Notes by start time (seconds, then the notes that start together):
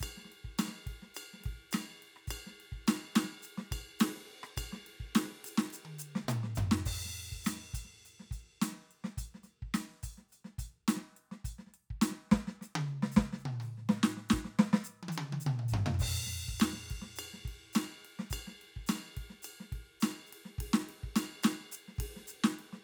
0.01 kick, hi-hat pedal, ride bell
0.18 snare
0.26 snare
0.33 ride
0.45 kick
0.59 snare, hi-hat pedal, ride bell
0.69 snare
0.88 kick, ride
0.93 kick
1.03 snare
1.15 hi-hat pedal, ride bell
1.34 snare
1.41 snare, ride
1.47 kick
1.53 kick
1.56 kick
1.72 snare, hi-hat pedal, ride bell
1.86 cross-stick
2.03 ride
2.17 cross-stick
2.28 kick, hi-hat pedal, ride bell
2.34 kick
2.48 snare
2.61 ride
2.73 kick
2.88 snare, hi-hat pedal, ride bell
3.17 snare, ride bell
3.25 snare
3.43 hi-hat pedal, ride
3.59 snare
3.73 kick, ride bell
3.79 kick
3.82 kick
4.00 snare, hi-hat pedal, ride
4.31 ride
4.44 cross-stick
4.58 kick, hi-hat pedal, ride bell
4.64 kick
4.67 kick
4.74 snare
4.88 ride
5.01 kick
5.16 snare, hi-hat pedal, ride
5.26 snare
5.45 hi-hat pedal, ride
5.59 snare
5.72 hi-hat pedal, ride
5.86 high tom
6.00 hi-hat pedal
6.16 snare
6.25 kick
6.29 hi-hat pedal, mid tom
6.44 snare
6.56 kick, floor tom, hi-hat pedal
6.68 kick
6.72 snare
6.87 kick, hi-hat pedal, crash
6.96 kick
7.06 snare
7.33 kick
7.45 closed hi-hat, snare, hi-hat pedal
7.57 snare
7.75 closed hi-hat, kick
7.81 kick
7.85 snare
8.06 closed hi-hat
8.21 snare
8.32 closed hi-hat, kick
8.63 closed hi-hat, snare
8.73 snare
8.92 closed hi-hat
9.05 snare
9.19 closed hi-hat, kick
9.24 kick
9.35 snare
9.44 closed hi-hat, snare
9.63 kick
9.75 closed hi-hat, snare
10.04 open hi-hat, kick
10.19 snare
10.30 closed hi-hat, hi-hat pedal
10.46 snare
10.60 closed hi-hat, kick
10.65 kick
10.89 closed hi-hat, snare
10.98 snare
11.18 closed hi-hat
11.33 snare
11.46 closed hi-hat, kick
11.51 kick
11.60 snare
11.68 snare
11.75 closed hi-hat
11.91 kick
12.03 closed hi-hat, snare
12.12 snare
12.33 kick, snare
12.48 snare
12.62 snare, hi-hat pedal
12.77 high tom
12.88 cross-stick
13.04 snare
13.13 hi-hat pedal
13.18 kick, snare
13.25 kick
13.28 kick
13.34 snare
13.40 kick, hi-hat pedal
13.47 mid tom
13.61 hi-hat pedal, open hi-hat, high tom
13.79 snare
13.90 snare
14.04 snare
14.18 snare
14.30 snare, hi-hat pedal
14.34 kick
14.43 kick, snare
14.60 snare
14.74 snare
14.85 hi-hat pedal
15.04 high tom
15.10 hi-hat pedal, high tom
15.19 high tom
15.34 high tom
15.41 hi-hat pedal
15.48 mid tom
15.60 mid tom
15.69 hi-hat pedal
15.73 kick, floor tom
15.87 floor tom
15.95 floor tom
16.00 kick, hi-hat pedal, crash
16.28 snare
16.50 kick
16.58 kick, ride bell
16.62 snare, hi-hat pedal
16.74 snare
16.91 kick, ride
16.98 kick
17.03 snare
17.17 hi-hat pedal, ride bell
17.35 snare
17.46 kick, ride
17.52 kick
17.74 snare, hi-hat pedal, ride bell
18.06 ride
18.20 snare
18.31 kick, hi-hat pedal, ride bell
18.38 kick
18.40 kick
18.48 snare
18.63 ride
18.77 kick
18.88 snare, hi-hat pedal, ride bell
19.01 snare
19.18 kick, ride
19.31 snare
19.43 hi-hat pedal, ride bell
19.61 snare
19.73 kick, ride
19.79 kick
20.01 snare, hi-hat pedal, ride bell
20.28 hi-hat pedal
20.34 ride
20.46 snare
20.59 kick, ride
20.65 kick
20.69 kick
20.74 snare
20.90 ride
21.05 kick
21.17 snare, hi-hat pedal, ride bell
21.44 snare, hi-hat pedal, ride bell
21.73 hi-hat pedal, ride
21.89 snare
21.97 kick, hi-hat pedal
22.01 ride
22.07 kick
22.10 kick
22.17 snare
22.28 hi-hat pedal
22.33 ride
22.45 snare
22.60 ride
22.74 snare